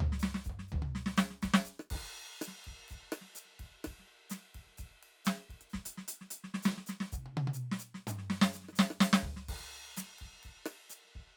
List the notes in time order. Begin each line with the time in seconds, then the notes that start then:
0.01 floor tom
0.13 snare
0.19 kick, hi-hat pedal
0.23 snare
0.35 snare
0.45 kick, hi-hat pedal
0.50 mid tom
0.55 kick
0.59 snare
0.68 floor tom, hi-hat pedal
0.73 kick
0.83 high tom
0.90 kick
0.95 snare
1.06 snare
1.17 snare, hi-hat pedal
1.31 snare
1.42 kick, snare, hi-hat pedal
1.50 kick
1.54 snare
1.64 kick, hi-hat pedal
1.80 cross-stick
1.91 kick, crash
1.95 kick, cross-stick
2.42 cross-stick, hi-hat pedal, ride
2.48 snare
2.65 kick, ride
2.70 snare
2.74 snare
2.79 snare
2.81 snare
2.89 kick, hi-hat pedal, ride
2.96 kick
3.12 cross-stick, ride
3.22 snare
3.36 hi-hat pedal, ride
3.45 snare
3.50 snare
3.54 snare
3.60 kick, ride
3.65 kick
3.85 kick, cross-stick, hi-hat pedal, ride
3.92 kick
4.00 snare
4.30 snare, hi-hat pedal, ride
4.55 kick, ride
4.60 kick
4.69 snare
4.74 snare, hi-hat pedal
4.79 kick, ride
4.85 kick
5.03 ride
5.25 snare, hi-hat pedal, ride
5.37 snare
5.50 kick, ride
5.55 kick
5.61 open hi-hat
5.70 snare, hi-hat pedal
5.75 kick
5.80 kick
5.86 closed hi-hat
5.98 snare
6.08 open hi-hat
6.21 snare
6.31 open hi-hat
6.44 snare
6.54 snare
6.63 snare, hi-hat pedal
6.78 snare
6.87 snare, hi-hat pedal
7.01 snare
7.12 kick, hi-hat pedal, high tom
7.20 kick
7.26 high tom
7.37 high tom
7.48 high tom
7.54 hi-hat pedal
7.72 snare
7.79 hi-hat pedal
7.95 snare
8.07 hi-hat pedal, mid tom
8.19 snare
8.30 snare
8.42 snare
8.54 snare, hi-hat pedal
8.62 snare
8.64 snare
8.69 cross-stick
8.73 snare, hi-hat pedal
8.79 snare
8.91 cross-stick
8.98 kick, snare, hi-hat pedal
9.13 snare
9.23 kick, floor tom
9.29 kick
9.37 snare
9.49 kick, crash
9.55 kick
9.60 snare
9.97 snare, hi-hat pedal, ride
10.19 kick, snare, ride
10.27 kick, snare
10.34 snare
10.38 snare
10.43 kick, hi-hat pedal, ride
10.50 kick
10.66 cross-stick, ride
10.90 hi-hat pedal
11.05 snare
11.14 kick, ride
11.21 kick